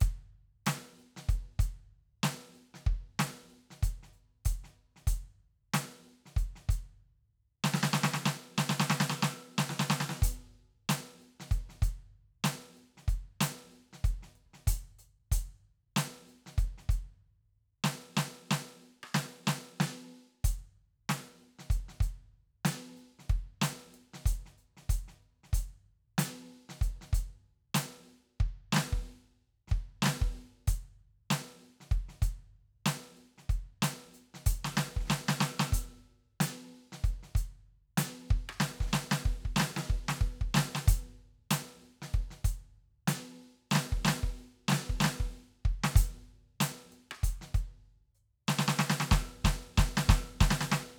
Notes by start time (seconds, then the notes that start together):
0.01 closed hi-hat, kick
0.67 closed hi-hat, snare
0.99 closed hi-hat
1.17 snare
1.29 closed hi-hat, kick, crash
1.60 closed hi-hat, kick
2.24 closed hi-hat, snare
2.50 snare
2.56 closed hi-hat
2.75 snare
2.87 kick, closed hi-hat
3.20 closed hi-hat, snare
3.51 closed hi-hat
3.71 snare
3.83 closed hi-hat, kick
4.03 snare
4.13 closed hi-hat
4.46 closed hi-hat, kick
4.64 snare
4.97 snare
5.08 closed hi-hat, kick
5.74 closed hi-hat, snare
6.26 snare
6.37 closed hi-hat, kick
6.56 snare
6.69 closed hi-hat, kick
7.64 snare
7.74 snare
7.84 snare
7.94 snare
8.04 snare
8.26 snare
8.58 snare
8.70 snare
8.80 snare
9.01 snare
9.10 snare
9.23 snare
9.59 snare
9.70 snare
9.80 snare
9.90 snare
10.01 snare
10.10 snare
10.23 closed hi-hat, kick
10.90 closed hi-hat, snare
11.22 closed hi-hat
11.40 snare
11.52 closed hi-hat, kick
11.70 snare
11.83 closed hi-hat, kick
12.45 closed hi-hat, snare
12.78 closed hi-hat
12.98 snare
13.08 closed hi-hat, kick
13.41 closed hi-hat, snare
13.93 snare
14.05 closed hi-hat, kick
14.23 snare
14.36 closed hi-hat
14.47 kick
14.54 snare
14.68 closed hi-hat, kick
14.99 closed hi-hat
15.32 closed hi-hat, kick
15.97 closed hi-hat, snare
16.28 closed hi-hat
16.47 snare
16.58 closed hi-hat, kick
16.78 snare
16.90 closed hi-hat, kick
17.84 snare
18.17 snare
18.51 snare
19.04 cross-stick
19.15 snare
19.48 snare
19.81 snare
20.45 closed hi-hat, kick
21.10 closed hi-hat, snare
21.40 closed hi-hat
21.59 snare
21.71 closed hi-hat, kick
21.89 snare
22.01 closed hi-hat, kick
22.65 closed hi-hat, snare
22.97 closed hi-hat
23.19 snare
23.30 kick, closed hi-hat
23.62 closed hi-hat, snare
23.95 closed hi-hat
24.14 snare
24.26 closed hi-hat, kick
24.46 snare
24.58 closed hi-hat
24.77 snare
24.90 closed hi-hat, kick
25.08 snare
25.23 closed hi-hat
25.44 snare
25.53 closed hi-hat, kick
26.19 closed hi-hat, snare
26.70 snare
26.82 closed hi-hat, kick
27.02 snare
27.13 closed hi-hat, kick
27.75 closed hi-hat, snare
28.41 kick
28.73 snare
28.77 snare
28.93 kick
29.68 kick, snare
29.72 kick
30.03 snare
30.06 snare
30.22 kick
30.68 closed hi-hat, kick
31.31 closed hi-hat, snare
31.81 snare
31.92 kick, closed hi-hat
31.96 crash
32.09 snare
32.22 closed hi-hat, kick
32.86 closed hi-hat, snare
33.18 closed hi-hat
33.38 snare
33.50 closed hi-hat, kick
33.83 closed hi-hat, snare
34.14 closed hi-hat
34.35 snare
34.47 closed hi-hat, kick
34.65 snare
34.76 snare, hi-hat pedal
34.97 kick, snare
35.06 snare
35.08 snare
35.10 snare
35.29 snare
35.41 snare
35.60 snare
35.73 closed hi-hat, kick
36.41 closed hi-hat, snare
36.93 snare
37.04 closed hi-hat, kick
37.23 snare
37.36 closed hi-hat, kick
37.98 closed hi-hat, snare
38.28 kick, hi-hat pedal
38.50 cross-stick
38.61 snare
38.81 kick, snare
38.87 snare
38.93 snare, hi-hat pedal
39.12 snare
39.26 kick
39.46 kick
39.57 snare, hi-hat pedal
39.60 snare
39.77 snare
39.90 kick
40.09 snare
40.21 kick
40.42 kick
40.50 kick
40.55 snare
40.57 snare
40.75 snare
40.88 closed hi-hat, kick
41.51 closed hi-hat, snare
42.02 snare
42.14 kick, closed hi-hat
42.31 snare
42.45 closed hi-hat, kick
43.08 closed hi-hat, snare
43.71 snare, hi-hat pedal
43.76 snare
43.93 kick
44.05 snare
44.09 snare
44.24 kick
44.69 snare
44.72 snare
44.90 kick
45.01 snare
45.05 snare
45.20 kick
45.31 hi-hat pedal
45.66 kick, snare
45.70 crash, ride
45.84 snare
45.96 closed hi-hat, kick
46.61 closed hi-hat, snare
46.93 closed hi-hat
47.12 cross-stick
47.24 closed hi-hat, kick
47.42 snare
47.55 closed hi-hat, kick
48.15 hi-hat pedal
48.48 snare, hi-hat pedal
48.59 snare
48.68 snare
48.77 snare, hi-hat pedal
48.90 snare
49.01 snare
49.12 kick, snare
49.45 kick, snare, hi-hat pedal
49.78 kick, snare, hi-hat pedal
49.98 snare
50.09 kick, snare, hi-hat pedal
50.41 kick, snare, hi-hat pedal
50.72 snare